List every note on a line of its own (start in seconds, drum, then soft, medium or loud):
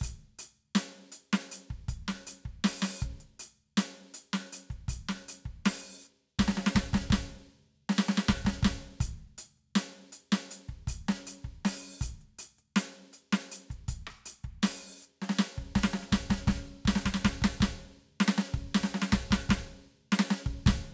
0.01 closed hi-hat loud
0.01 kick medium
0.01 hi-hat pedal medium
0.22 closed hi-hat soft
0.39 closed hi-hat loud
0.75 closed hi-hat loud
0.75 snare loud
1.12 closed hi-hat loud
1.33 snare loud
1.51 closed hi-hat loud
1.70 kick soft
1.70 closed hi-hat soft
1.88 closed hi-hat medium
1.88 kick medium
2.08 snare medium
2.27 closed hi-hat loud
2.43 kick soft
2.43 closed hi-hat soft
2.64 open hi-hat loud
2.64 snare loud
2.82 open hi-hat loud
2.82 snare loud
3.02 kick medium
3.02 hi-hat pedal soft
3.20 closed hi-hat medium
3.39 closed hi-hat loud
3.77 closed hi-hat loud
3.77 snare loud
3.97 closed hi-hat soft
4.13 closed hi-hat loud
4.13 hi-hat pedal soft
4.33 snare loud
4.52 closed hi-hat loud
4.70 kick soft
4.70 closed hi-hat soft
4.88 closed hi-hat loud
4.88 kick medium
5.08 snare medium
5.28 closed hi-hat loud
5.45 kick soft
5.65 open hi-hat loud
5.65 snare loud
6.03 hi-hat pedal medium
6.39 kick medium
6.39 snare loud
6.48 snare loud
6.57 snare loud
6.66 snare loud
6.75 kick medium
6.75 snare loud
6.93 kick medium
6.93 snare loud
7.10 kick loud
7.10 snare loud
7.89 snare loud
7.98 snare loud
8.08 snare loud
8.17 snare loud
8.28 kick medium
8.28 snare loud
8.45 kick medium
8.45 snare loud
8.62 kick medium
8.62 snare loud
9.00 closed hi-hat loud
9.00 kick medium
9.38 closed hi-hat loud
9.57 closed hi-hat soft
9.75 closed hi-hat loud
9.75 snare loud
10.12 closed hi-hat medium
10.32 snare loud
10.51 closed hi-hat loud
10.68 kick soft
10.68 closed hi-hat soft
10.87 closed hi-hat loud
10.87 kick medium
11.08 snare loud
11.27 closed hi-hat loud
11.44 kick soft
11.44 closed hi-hat soft
11.65 open hi-hat loud
11.65 snare loud
12.00 closed hi-hat loud
12.00 kick medium
12.00 hi-hat pedal medium
12.21 closed hi-hat soft
12.38 closed hi-hat loud
12.58 closed hi-hat soft
12.76 closed hi-hat loud
12.76 snare loud
12.95 closed hi-hat soft
13.13 closed hi-hat medium
13.32 snare loud
13.51 closed hi-hat loud
13.70 kick soft
13.70 closed hi-hat medium
13.88 closed hi-hat loud
13.88 kick medium
14.07 cross-stick medium
14.25 closed hi-hat loud
14.44 kick soft
14.44 closed hi-hat soft
14.62 open hi-hat loud
14.62 snare loud
15.01 hi-hat pedal medium
15.22 snare medium
15.29 snare loud
15.36 snare loud
15.36 hi-hat pedal medium
15.58 kick medium
15.75 kick medium
15.75 snare loud
15.83 snare loud
15.93 snare loud
16.02 snare medium
16.12 kick medium
16.12 snare loud
16.30 kick medium
16.30 snare loud
16.47 kick loud
16.47 snare loud
16.85 kick medium
16.85 snare loud
16.95 snare loud
17.05 kick medium
17.05 snare loud
17.14 snare loud
17.24 kick medium
17.24 snare loud
17.42 kick medium
17.42 snare loud
17.60 kick medium
17.60 snare loud
18.20 snare loud
18.28 snare loud
18.38 snare loud
18.54 kick medium
18.74 snare loud
18.80 kick soft
18.80 snare loud
18.94 snare loud
19.02 snare loud
19.12 kick medium
19.12 snare loud
19.30 kick medium
19.30 snare loud
19.49 kick medium
19.49 snare loud
20.12 snare loud
20.19 snare loud
20.30 snare loud
20.46 kick medium
20.66 kick loud
20.66 snare loud